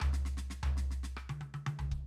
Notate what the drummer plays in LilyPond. \new DrumStaff \drummode { \time 4/4 \tempo 4 = 116 <ss tomfh>16 sn16 sn16 sn16 sn16 tomfh16 sn16 sn16 sn16 ss16 <tommh hh>16 tommh16 tommh16 tommh16 tomfh16 bd16 | }